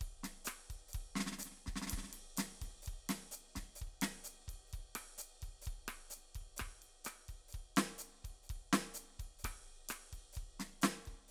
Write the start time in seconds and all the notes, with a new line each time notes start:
0.01 kick, ride
0.07 kick
0.24 snare, ride
0.45 cross-stick, hi-hat pedal, ride
0.70 kick, ride
0.75 kick
0.89 hi-hat pedal
0.94 kick, ride
1.00 kick
1.16 snare
1.20 snare
1.26 snare
1.32 snare
1.39 snare, hi-hat pedal
1.43 snare, ride
1.51 snare
1.56 snare
1.66 kick, snare
1.74 kick, snare
1.82 snare
1.87 snare, ride
1.91 kick, snare
1.98 kick, snare
2.03 snare
2.08 snare
2.12 snare, ride
2.15 snare
2.37 snare, hi-hat pedal, ride
2.62 kick, snare, ride
2.67 kick, snare
2.82 hi-hat pedal
2.86 kick, ride
2.93 kick
3.09 snare, ride
3.31 hi-hat pedal, ride
3.56 kick, snare, ride
3.62 kick
3.75 hi-hat pedal
3.80 kick, ride
3.87 kick
4.02 snare, ride
4.24 hi-hat pedal, ride
4.48 kick, ride
4.53 kick
4.68 hi-hat pedal
4.73 kick, ride
4.79 kick
4.95 cross-stick, ride
5.18 hi-hat pedal, ride
5.42 kick, ride
5.48 kick
5.62 hi-hat pedal
5.66 kick, ride
5.73 kick
5.88 cross-stick, ride
6.10 hi-hat pedal, ride
6.16 snare
6.35 kick, ride
6.41 kick
6.57 cross-stick, hi-hat pedal, ride
6.61 kick
6.67 kick
6.82 ride
7.05 cross-stick, hi-hat pedal, ride
7.29 kick, ride
7.34 kick
7.48 hi-hat pedal
7.53 kick, ride
7.59 kick
7.77 snare, ride
7.98 hi-hat pedal, ride
8.25 kick, ride
8.30 kick
8.43 hi-hat pedal
8.50 kick, ride
8.56 kick
8.73 snare, ride
8.79 cross-stick
8.94 hi-hat pedal, ride
9.19 kick, ride
9.25 kick
9.39 hi-hat pedal
9.44 kick, cross-stick, ride
9.50 kick
9.89 cross-stick, hi-hat pedal, ride
10.13 kick, snare, ride
10.18 kick
10.33 hi-hat pedal, ride
10.37 kick
10.42 kick
10.60 snare, ride
10.82 snare, hi-hat pedal, ride
11.06 kick, ride
11.13 kick, snare
11.19 snare
11.28 hi-hat pedal